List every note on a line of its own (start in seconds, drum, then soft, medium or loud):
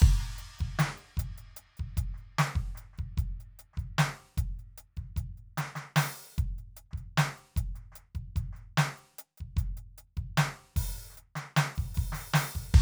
0.01 kick loud
0.01 hi-hat pedal medium
0.01 crash loud
0.19 closed hi-hat soft
0.39 closed hi-hat medium
0.60 kick medium
0.60 closed hi-hat soft
0.80 closed hi-hat loud
0.80 snare loud
0.98 closed hi-hat soft
1.18 kick medium
1.18 closed hi-hat loud
1.39 closed hi-hat medium
1.57 closed hi-hat loud
1.78 kick soft
1.78 closed hi-hat soft
1.98 closed hi-hat loud
1.98 kick medium
2.15 snare soft
2.19 closed hi-hat soft
2.39 closed hi-hat loud
2.39 snare loud
2.56 kick medium
2.56 closed hi-hat soft
2.76 closed hi-hat medium
2.76 snare soft
2.94 snare soft
2.99 kick soft
2.99 closed hi-hat soft
3.18 kick medium
3.18 closed hi-hat medium
3.41 closed hi-hat soft
3.60 closed hi-hat medium
3.74 kick medium
3.74 snare soft
3.80 closed hi-hat soft
3.99 closed hi-hat loud
3.99 snare loud
4.38 closed hi-hat loud
4.38 kick medium
4.60 closed hi-hat soft
4.79 closed hi-hat loud
4.98 kick soft
4.98 snare soft
4.98 closed hi-hat soft
5.17 closed hi-hat medium
5.17 kick medium
5.38 closed hi-hat soft
5.58 closed hi-hat loud
5.58 snare medium
5.76 snare medium
5.76 closed hi-hat medium
5.97 open hi-hat loud
5.97 snare loud
6.36 closed hi-hat medium
6.36 kick medium
6.36 hi-hat pedal medium
6.59 closed hi-hat soft
6.78 closed hi-hat medium
6.92 kick soft
6.92 snare soft
6.98 closed hi-hat soft
7.18 closed hi-hat loud
7.18 snare loud
7.38 closed hi-hat soft
7.57 closed hi-hat loud
7.57 kick medium
7.76 snare soft
7.76 closed hi-hat soft
7.93 closed hi-hat medium
7.93 snare soft
8.16 kick soft
8.16 closed hi-hat soft
8.37 closed hi-hat medium
8.37 kick medium
8.37 snare soft
8.54 snare soft
8.54 closed hi-hat soft
8.78 closed hi-hat medium
8.78 snare loud
8.98 closed hi-hat soft
9.19 closed hi-hat loud
9.38 kick soft
9.38 closed hi-hat medium
9.58 closed hi-hat medium
9.58 kick medium
9.58 snare soft
9.78 closed hi-hat medium
9.99 closed hi-hat medium
10.18 kick medium
10.18 closed hi-hat soft
10.38 closed hi-hat loud
10.38 snare loud
10.77 open hi-hat loud
10.77 kick medium
10.96 open hi-hat soft
11.11 snare soft
11.14 snare soft
11.14 hi-hat pedal medium
11.18 closed hi-hat medium
11.36 snare medium
11.36 closed hi-hat medium
11.57 closed hi-hat loud
11.57 snare loud
11.76 kick medium
11.76 open hi-hat medium
11.95 open hi-hat medium
11.95 kick medium
12.13 open hi-hat medium
12.13 snare medium
12.35 open hi-hat loud
12.35 snare loud
12.56 kick soft
12.75 kick loud
12.75 crash loud